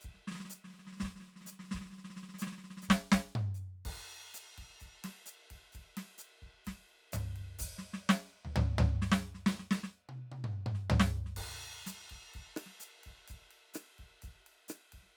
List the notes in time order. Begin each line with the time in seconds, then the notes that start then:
0.01 kick, hi-hat pedal
0.09 kick
0.14 snare
0.27 snare
0.31 snare
0.34 snare
0.40 snare
0.45 snare
0.49 snare, hi-hat pedal
0.54 snare
0.64 snare
0.67 snare
0.69 snare
0.73 snare
0.79 snare
0.85 snare
0.87 snare
0.92 snare
0.97 snare, hi-hat pedal
1.00 kick, snare
1.04 kick, snare
1.10 snare
1.16 snare
1.20 snare
1.22 snare
1.27 snare
1.32 snare
1.36 snare
1.41 snare
1.45 snare, hi-hat pedal
1.47 snare
1.52 snare
1.59 snare
1.63 snare
1.68 snare
1.71 kick, snare
1.76 kick, snare
1.81 snare
1.85 snare
1.90 snare
1.92 snare
1.98 snare
2.04 snare
2.10 snare
2.15 snare
2.16 snare
2.23 snare
2.29 snare
2.34 snare
2.38 snare, hi-hat pedal
2.47 snare
2.52 snare
2.58 snare
2.64 snare
2.70 snare
2.77 snare
2.82 snare, hi-hat pedal
2.89 kick, snare
3.12 kick, snare
3.35 mid tom
3.54 hi-hat pedal
3.85 kick, crash
3.91 kick
4.34 hi-hat pedal, ride
4.58 kick, ride
4.63 kick
4.80 kick, hi-hat pedal, ride
4.86 kick
5.04 snare, ride
5.26 hi-hat pedal
5.50 kick, ride
5.72 kick, hi-hat pedal, ride
5.80 kick
5.97 snare, ride
6.18 hi-hat pedal
6.42 kick, ride
6.47 kick
6.64 kick, snare, hi-hat pedal, ride
6.71 kick
6.89 ride
7.12 hi-hat pedal, ride, floor tom
7.36 kick, ride
7.42 kick
7.59 kick, hi-hat pedal, ride
7.78 snare
7.93 snare
8.09 snare
8.45 floor tom
8.56 floor tom
8.78 floor tom
8.86 snare
9.02 snare
9.12 snare
9.17 snare
9.21 snare
9.34 snare
9.46 snare
9.59 snare
9.71 snare
9.83 snare
10.09 high tom
10.32 high tom
10.44 mid tom
10.66 mid tom
10.74 snare
10.90 kick, floor tom
11.00 snare
11.26 snare
11.36 kick, crash
11.48 high tom
11.86 snare, hi-hat pedal, ride
12.01 snare
12.10 kick, ride
12.16 kick
12.33 kick, hi-hat pedal, ride
12.56 cross-stick, ride
12.66 snare
12.80 hi-hat pedal, ride
13.03 kick, ride
13.11 kick
13.28 kick, hi-hat pedal, ride
13.35 kick
13.51 ride
13.74 cross-stick, hi-hat pedal, ride
13.98 kick, ride
14.04 kick
14.22 kick, hi-hat pedal, ride
14.46 ride
14.68 cross-stick, hi-hat pedal, ride
14.92 kick, ride
15.02 snare